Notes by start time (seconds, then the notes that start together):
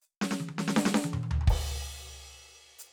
0.02 hi-hat pedal
0.21 snare
0.31 snare
0.40 high tom
0.49 high tom
0.58 snare
0.68 snare
0.76 snare
0.85 snare
0.94 snare
1.04 high tom
1.13 mid tom
1.23 high tom
1.31 floor tom
1.41 floor tom
1.43 kick, floor tom
1.49 crash
2.79 hi-hat pedal